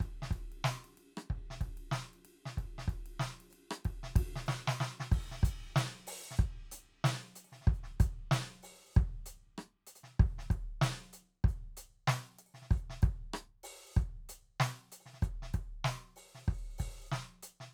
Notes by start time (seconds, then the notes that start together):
0.01 kick, ride
0.22 snare
0.31 kick, ride
0.52 ride
0.64 snare, hi-hat pedal
0.85 ride
0.98 ride
1.17 cross-stick
1.30 kick
1.51 snare
1.61 kick, ride
1.78 ride
1.92 snare, hi-hat pedal
2.14 ride
2.25 ride
2.46 snare
2.58 kick, ride
2.78 snare
2.88 kick, ride
3.06 ride
3.20 snare, hi-hat pedal
3.41 ride
3.50 hi-hat pedal, ride
3.71 cross-stick
3.85 kick, ride
4.03 snare
4.16 kick, ride
4.36 snare
4.46 snare, hi-hat pedal
4.68 snare
4.81 snare
5.00 snare
5.12 kick, crash
5.32 snare
5.43 closed hi-hat, kick
5.76 snare
6.07 open hi-hat
6.31 snare
6.39 kick
6.72 closed hi-hat
7.04 snare
7.13 snare
7.36 closed hi-hat
7.45 open hi-hat
7.52 snare
7.62 snare
7.67 kick
7.74 hi-hat pedal
7.84 snare
8.00 closed hi-hat, kick
8.31 snare
8.63 open hi-hat
8.95 kick, hi-hat pedal
9.26 closed hi-hat
9.58 cross-stick
9.87 closed hi-hat
9.96 closed hi-hat
10.04 snare
10.14 snare
10.20 kick, open hi-hat
10.39 snare, hi-hat pedal
10.51 kick, closed hi-hat
10.82 snare
11.13 open hi-hat
11.44 kick, hi-hat pedal
11.77 closed hi-hat
12.08 snare
12.39 open hi-hat
12.47 open hi-hat
12.54 snare
12.62 snare
12.70 open hi-hat, kick
12.77 hi-hat pedal
12.90 snare
13.02 kick, closed hi-hat
13.34 cross-stick
13.64 open hi-hat
13.96 kick, hi-hat pedal
14.29 closed hi-hat
14.60 snare
14.92 open hi-hat
15.00 open hi-hat
15.06 snare
15.14 snare
15.22 open hi-hat, kick, hi-hat pedal
15.43 snare
15.54 kick, closed hi-hat
15.85 snare
16.16 open hi-hat
16.35 snare
16.48 kick
16.78 open hi-hat, kick
17.06 hi-hat pedal
17.12 snare
17.43 closed hi-hat
17.60 snare